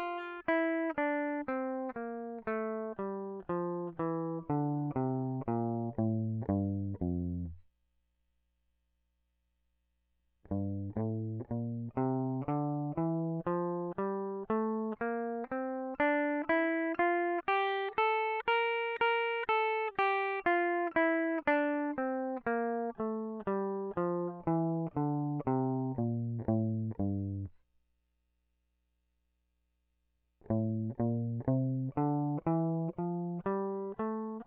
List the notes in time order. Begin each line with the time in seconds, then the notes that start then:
0.00 F4
0.48 E4
0.98 D4
1.49 C4
1.97 A#3
2.48 A3
3.00 G3
3.50 F3
4.00 E3
4.51 D3
4.97 C3
5.49 A#2
6.00 A2
6.50 G2
7.04 F2
7.52 E2
10.53 G2
10.98 A2
11.52 A#2
11.98 C3
12.49 D3
12.98 E3
13.48 F3
13.99 G3
14.51 A3
15.01 A#3
15.52 C4
16.00 D4
16.50 E4
16.99 F4
17.48 G4
17.98 A4
18.48 A#4
19.01 A#4
19.49 A4
19.99 G4
20.46 F4
20.96 E4
21.48 D4
21.98 C4
22.47 A#3
23.00 A3
23.48 G3
23.98 F3
24.48 E3
24.98 D3
25.48 C3
26.00 A#2
26.50 A2
27.01 G2
30.52 A2
31.01 A#2
31.49 C3
31.98 D3
32.48 E3
32.99 F3
33.47 G3
34.00 A3